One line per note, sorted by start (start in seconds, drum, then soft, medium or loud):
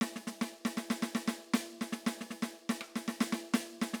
0.04 snare loud
0.16 snare medium
0.27 snare medium
0.41 snare medium
0.65 snare loud
0.77 snare medium
0.90 snare loud
1.02 snare medium
1.15 snare loud
1.28 snare loud
1.54 snare loud
1.81 snare medium
1.93 snare medium
2.07 snare loud
2.21 snare medium
2.31 snare medium
2.42 snare medium
2.69 snare loud
2.81 cross-stick medium
2.96 snare medium
3.08 snare medium
3.21 snare loud
3.33 snare medium
3.54 snare loud
3.82 snare loud
3.94 snare medium